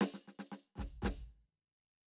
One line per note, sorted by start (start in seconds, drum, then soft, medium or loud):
0.01 snare loud
0.13 snare soft
0.27 snare soft
0.39 snare soft
0.52 snare soft
0.75 kick soft
0.75 snare soft
0.79 snare soft
1.02 kick medium
1.02 snare soft
1.05 snare medium